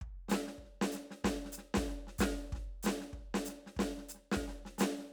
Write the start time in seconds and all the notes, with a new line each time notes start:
0.00 kick
0.28 snare, hi-hat pedal
0.31 snare
0.47 snare
0.58 kick
0.64 snare
0.81 snare
0.92 snare, hi-hat pedal
1.10 snare
1.24 kick, snare
1.45 snare
1.52 hi-hat pedal
1.58 snare
1.74 kick, snare
1.88 snare
2.07 snare
2.18 kick, snare, hi-hat pedal
2.52 kick, snare
2.83 snare, hi-hat pedal
2.86 snare
3.01 snare
3.13 kick
3.17 snare
3.34 snare
3.45 snare, hi-hat pedal
3.66 snare
3.76 kick, snare
3.97 snare
4.09 hi-hat pedal
4.15 snare
4.31 snare
4.36 kick
4.48 snare
4.65 snare
4.78 snare, hi-hat pedal
4.81 snare
4.98 snare